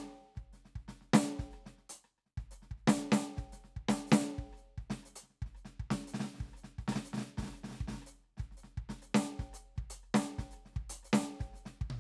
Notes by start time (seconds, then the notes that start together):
0.01 cross-stick, snare
0.26 snare
0.36 kick, snare
0.53 snare, hi-hat pedal
0.65 snare
0.76 kick, snare
0.78 snare
0.88 snare
1.01 snare
1.14 snare
1.18 cross-stick
1.39 kick, snare
1.51 cross-stick, snare, hi-hat pedal
1.66 snare
1.78 snare
1.90 closed hi-hat
2.05 cross-stick
2.18 cross-stick
2.26 snare
2.38 kick, snare
2.51 cross-stick, snare, hi-hat pedal
2.71 kick
2.77 snare
2.88 snare
2.92 cross-stick
3.01 snare
3.12 snare
3.17 cross-stick
3.37 kick, snare
3.53 snare, hi-hat pedal
3.64 snare
3.77 kick, snare
3.89 snare
4.01 snare
4.08 hi-hat pedal
4.12 snare
4.18 cross-stick
4.28 snare
4.39 kick
4.48 snare
4.53 cross-stick, snare, open hi-hat
4.57 hi-hat pedal
4.78 kick, snare
4.90 snare
5.03 cross-stick, snare, hi-hat pedal
5.16 closed hi-hat
5.23 snare
5.30 snare
5.42 kick, snare
5.53 cross-stick, snare, hi-hat pedal
5.65 snare
5.80 kick, cross-stick
5.91 snare
6.02 cross-stick, snare
6.08 hi-hat pedal
6.14 snare
6.20 snare
6.24 snare
6.29 snare
6.34 snare
6.38 kick, snare
6.41 snare
6.44 snare
6.48 snare
6.54 cross-stick, hi-hat pedal, open hi-hat
6.64 snare
6.79 kick, snare
6.88 snare
6.93 cross-stick, snare
7.00 snare
7.05 hi-hat pedal
7.14 snare
7.17 snare
7.21 snare
7.38 kick, snare
7.42 snare
7.46 snare
7.50 cross-stick, snare
7.57 hi-hat pedal
7.64 snare
7.68 snare
7.71 snare
7.74 snare
7.78 kick, cross-stick
7.88 snare
7.91 snare
7.94 snare
7.97 snare
8.02 cross-stick
8.07 hi-hat pedal
8.24 cross-stick
8.37 kick, snare
8.40 snare
8.51 snare, crash
8.57 hi-hat pedal
8.64 snare
8.78 kick, cross-stick
8.89 snare
8.98 snare
9.02 cross-stick, snare, hi-hat pedal
9.15 snare
9.28 snare
9.39 kick, snare
9.52 cross-stick, snare, hi-hat pedal
9.76 kick, cross-stick, snare
9.90 closed hi-hat
10.04 cross-stick
10.15 snare
10.20 cross-stick
10.39 kick, snare
10.51 cross-stick, snare, hi-hat pedal
10.66 snare
10.73 kick, snare
10.77 snare
10.90 closed hi-hat
11.03 cross-stick, hi-hat pedal
11.13 snare
11.29 cross-stick
11.40 kick, snare
11.53 snare, hi-hat pedal
11.66 snare
11.79 kick, snare
11.90 high tom